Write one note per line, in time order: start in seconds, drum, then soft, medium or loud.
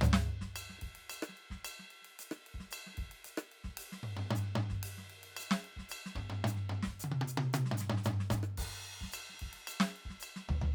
0.01 hi-hat pedal medium
0.01 floor tom loud
0.13 snare loud
0.26 floor tom soft
0.41 kick soft
0.41 snare medium
0.55 hi-hat pedal medium
0.55 ride bell loud
0.69 snare soft
0.78 kick soft
0.78 cross-stick soft
0.78 ride medium
0.87 kick soft
0.93 snare soft
0.93 ride medium
0.97 snare soft
1.09 hi-hat pedal medium
1.09 ride bell loud
1.22 cross-stick medium
1.29 snare soft
1.37 ride soft
1.50 kick soft
1.50 snare soft
1.64 hi-hat pedal medium
1.64 ride bell loud
1.79 snare soft
1.90 ride soft
2.01 snare soft
2.01 ride medium
2.05 snare soft
2.19 hi-hat pedal medium
2.19 ride medium
2.31 cross-stick medium
2.46 ride medium
2.54 kick soft
2.60 snare soft
2.71 hi-hat pedal medium
2.71 ride bell loud
2.86 snare soft
2.94 kick soft
2.94 cross-stick soft
2.94 ride medium
3.04 kick soft
3.11 snare soft
3.11 ride medium
3.24 hi-hat pedal medium
3.24 ride medium
3.37 cross-stick medium
3.51 ride soft
3.64 kick soft
3.64 snare soft
3.77 hi-hat pedal medium
3.77 ride loud
3.92 snare soft
4.03 mid tom medium
4.17 mid tom medium
4.30 mid tom loud
4.35 hi-hat pedal medium
4.43 snare soft
4.55 mid tom loud
4.69 kick soft
4.69 snare soft
4.83 hi-hat pedal medium
4.83 ride loud
4.98 snare soft
5.10 ride medium
5.23 ride medium
5.36 hi-hat pedal medium
5.36 ride bell loud
5.51 snare medium
5.64 ride soft
5.76 kick soft
5.76 snare soft
5.89 hi-hat pedal medium
5.89 ride bell loud
6.06 snare medium
6.15 kick soft
6.15 snare soft
6.15 mid tom medium
6.21 kick soft
6.30 mid tom medium
6.44 hi-hat pedal medium
6.44 mid tom loud
6.56 snare soft
6.69 mid tom medium
6.82 kick soft
6.82 snare medium
6.99 hi-hat pedal loud
7.04 high tom medium
7.11 high tom loud
7.21 high tom loud
7.27 hi-hat pedal medium
7.37 high tom loud
7.53 hi-hat pedal medium
7.53 high tom loud
7.65 snare medium
7.71 mid tom loud
7.77 snare medium
7.77 hi-hat pedal medium
7.90 mid tom loud
7.97 snare soft
8.04 hi-hat pedal medium
8.04 mid tom loud
8.20 snare medium
8.30 kick soft
8.30 hi-hat pedal medium
8.30 mid tom loud
8.43 cross-stick medium
8.57 kick medium
8.57 hi-hat pedal medium
8.57 crash medium
8.70 kick soft
9.01 kick soft
9.01 snare soft
9.12 hi-hat pedal medium
9.12 ride bell loud
9.29 snare soft
9.34 cross-stick soft
9.39 kick soft
9.39 ride medium
9.51 snare soft
9.51 ride medium
9.55 snare soft
9.67 hi-hat pedal medium
9.67 ride bell loud
9.80 snare loud
9.87 snare soft
9.96 ride soft
10.05 kick soft
10.10 snare soft
10.20 hi-hat pedal medium
10.20 ride bell loud
10.36 snare medium
10.48 kick soft
10.48 floor tom loud
10.61 floor tom loud